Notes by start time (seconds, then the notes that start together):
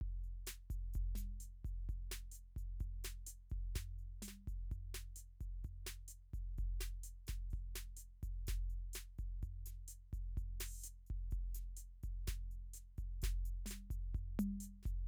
0.01 kick
0.24 closed hi-hat
0.47 open hi-hat, snare, hi-hat pedal
0.70 closed hi-hat, kick
0.76 kick
0.94 closed hi-hat, kick
1.01 kick
1.15 closed hi-hat, snare, mid tom
1.40 closed hi-hat, hi-hat pedal
1.65 closed hi-hat, kick
1.89 closed hi-hat, kick
2.11 closed hi-hat, snare
2.31 closed hi-hat, hi-hat pedal
2.56 closed hi-hat, kick
2.80 closed hi-hat, kick
3.04 open hi-hat, snare
3.26 closed hi-hat, hi-hat pedal
3.50 closed hi-hat, kick
3.75 open hi-hat, kick, snare
3.99 closed hi-hat
4.22 closed hi-hat, snare, hi-hat pedal, mid tom
4.28 snare
4.47 closed hi-hat, kick
4.71 closed hi-hat, kick
4.94 closed hi-hat, snare
5.16 closed hi-hat, hi-hat pedal
5.40 closed hi-hat, kick
5.64 closed hi-hat, kick
5.86 closed hi-hat, snare
6.08 closed hi-hat, hi-hat pedal
6.33 closed hi-hat, kick
6.58 closed hi-hat, kick
6.80 closed hi-hat, snare
7.03 closed hi-hat, hi-hat pedal
7.27 closed hi-hat, kick, snare
7.50 open hi-hat, kick
7.75 closed hi-hat, snare
7.97 closed hi-hat, hi-hat pedal
8.23 closed hi-hat, kick
8.47 closed hi-hat, kick, snare
8.70 closed hi-hat
8.93 closed hi-hat, snare, hi-hat pedal
9.18 closed hi-hat, kick
9.43 closed hi-hat, kick
9.66 closed hi-hat, snare
9.88 closed hi-hat, hi-hat pedal
10.13 closed hi-hat, kick
10.37 closed hi-hat, kick
10.60 open hi-hat, snare
10.83 hi-hat pedal
11.06 closed hi-hat, kick
11.31 closed hi-hat, kick
11.54 closed hi-hat, snare
11.77 closed hi-hat, hi-hat pedal
12.03 closed hi-hat, kick
12.27 closed hi-hat, kick, snare
12.33 kick
12.51 closed hi-hat
12.74 snare, hi-hat pedal
12.98 closed hi-hat, kick
13.22 open hi-hat, kick, snare
13.45 closed hi-hat
13.66 snare, hi-hat pedal, mid tom
13.71 snare
13.90 kick, closed hi-hat
14.15 closed hi-hat, kick
14.39 closed hi-hat, mid tom
14.60 closed hi-hat, hi-hat pedal
14.83 kick, snare, closed hi-hat